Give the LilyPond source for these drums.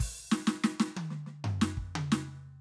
\new DrumStaff \drummode { \time 4/4 \tempo 4 = 92 <bd hho>8 sn16 sn16 sn16 sn16 tommh16 sn16 sn16 tomfh16 sn16 bd16 tommh16 sn8. | }